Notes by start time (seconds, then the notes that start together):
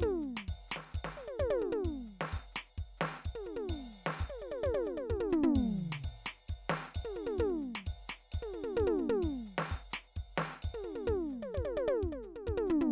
0.01 kick, mid tom
0.07 kick
0.11 mid tom
0.22 hi-hat pedal
0.37 snare
0.49 kick, ride
0.54 kick
0.68 snare, hi-hat pedal
0.77 snare
0.95 kick, ride
1.05 snare
1.14 hi-hat pedal, high tom
1.28 high tom
1.40 kick, high tom
1.50 high tom
1.59 hi-hat pedal, mid tom
1.72 mid tom
1.85 kick, ride bell
2.07 hi-hat pedal
2.21 snare
2.33 kick, ride bell
2.52 hi-hat pedal
2.56 snare
2.78 kick, ride bell
2.98 snare, hi-hat pedal
3.25 kick, ride
3.32 kick, mid tom
3.44 hi-hat pedal, mid tom
3.70 kick, ride bell
3.92 hi-hat pedal, ride
4.07 snare
4.19 kick, ride
4.30 high tom
4.39 hi-hat pedal, high tom
4.52 high tom
4.63 kick, high tom
4.75 high tom
4.85 hi-hat pedal, high tom
4.97 high tom
5.10 kick, mid tom
5.17 kick, mid tom
5.30 floor tom, hi-hat pedal
5.43 floor tom
5.56 kick, ride bell
5.78 hi-hat pedal
5.93 snare
6.04 kick, ride bell
6.10 kick
6.23 snare, hi-hat pedal
6.49 kick, ride bell
6.68 snare, hi-hat pedal
6.95 kick, ride
7.02 kick, mid tom
7.14 hi-hat pedal, mid tom
7.27 mid tom
7.39 kick, mid tom
7.49 mid tom
7.62 hi-hat pedal
7.76 snare
7.87 kick, ride bell
7.93 kick
8.08 snare, hi-hat pedal
8.32 kick, ride
8.42 mid tom
8.53 hi-hat pedal, mid tom
8.64 mid tom
8.77 kick, mid tom
8.87 mid tom
8.98 hi-hat pedal, mid tom
9.10 mid tom
9.23 kick, ride bell
9.46 hi-hat pedal
9.59 snare
9.70 kick, ride bell
9.91 snare, hi-hat pedal
10.17 kick, ride bell
10.23 kick
10.36 snare, hi-hat pedal
10.63 kick, ride
10.70 kick, mid tom
10.83 hi-hat pedal, mid tom
10.95 mid tom
11.07 kick, mid tom
11.15 kick
11.30 hi-hat pedal, high tom
11.43 high tom
11.55 kick, high tom
11.64 kick, high tom
11.77 hi-hat pedal, high tom
11.88 high tom
12.03 kick
12.09 kick, high tom
12.23 hi-hat pedal, mid tom
12.36 mid tom
12.47 kick, mid tom
12.57 mid tom
12.67 floor tom, hi-hat pedal
12.81 floor tom